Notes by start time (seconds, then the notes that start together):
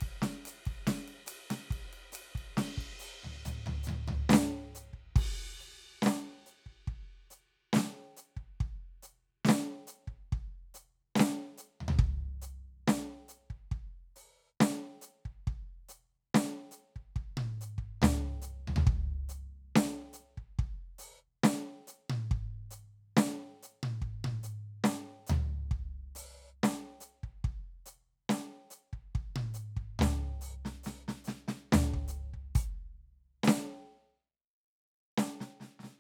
0.01 kick, hi-hat pedal, ride
0.22 snare, ride
0.46 hi-hat pedal, ride
0.66 kick, ride
0.72 hi-hat pedal
0.87 snare, ride
1.08 ride
1.27 hi-hat pedal, ride
1.50 snare, ride
1.71 kick, ride
1.93 ride
2.12 hi-hat pedal, ride
2.35 kick, ride
2.57 snare, ride
2.78 kick, ride
2.99 hi-hat pedal, ride
3.24 floor tom, high tom
3.45 floor tom, hi-hat pedal, high tom
3.66 floor tom, high tom
3.83 hi-hat pedal, high tom
3.89 floor tom
4.08 floor tom, high tom
4.29 snare
4.33 snare
4.75 hi-hat pedal
4.93 kick
5.16 kick, crash
5.60 hi-hat pedal
6.02 snare
6.06 snare
6.46 hi-hat pedal
6.66 kick
6.88 kick
7.31 hi-hat pedal
7.73 snare
7.76 snare
8.17 hi-hat pedal
8.37 kick
8.61 kick
9.03 hi-hat pedal
9.45 snare
9.49 snare
9.87 hi-hat pedal
10.08 kick
10.32 kick
10.74 hi-hat pedal
11.16 snare
11.20 snare
11.58 hi-hat pedal
11.81 floor tom
11.88 floor tom
11.99 kick
12.42 hi-hat pedal
12.88 snare
13.29 hi-hat pedal
13.50 kick
13.72 kick
14.16 hi-hat pedal
14.61 snare
15.02 hi-hat pedal
15.25 kick
15.47 kick
15.89 hi-hat pedal
16.35 snare
16.71 hi-hat pedal
16.96 kick
17.16 kick
17.37 high tom
17.61 hi-hat pedal
17.78 kick
18.02 snare, floor tom
18.42 hi-hat pedal
18.68 floor tom
18.76 floor tom
18.87 kick
19.29 hi-hat pedal
19.76 snare
20.13 hi-hat pedal
20.38 kick
20.59 kick
20.99 hi-hat pedal
21.44 snare
21.87 hi-hat pedal
22.10 high tom
22.31 kick
22.71 hi-hat pedal
23.17 snare
23.63 hi-hat pedal
23.83 high tom
24.02 kick
24.24 high tom
24.43 hi-hat pedal
24.84 snare
25.27 floor tom, hi-hat pedal
25.71 kick
25.80 kick
26.15 hi-hat pedal
26.63 snare
27.01 hi-hat pedal
27.23 kick
27.44 kick
27.86 hi-hat pedal
28.29 snare
28.71 hi-hat pedal
28.93 kick
29.15 kick
29.36 high tom
29.54 hi-hat pedal
29.77 kick
29.99 snare, floor tom
30.41 hi-hat pedal
30.65 snare
30.84 snare, hi-hat pedal
31.08 snare
31.24 snare, hi-hat pedal
31.48 snare
31.72 snare, floor tom
31.94 kick
32.08 hi-hat pedal
32.34 kick
32.55 open hi-hat, kick
32.76 kick
33.44 snare
33.48 snare
35.18 snare
35.41 snare
35.60 snare
35.79 snare
35.83 snare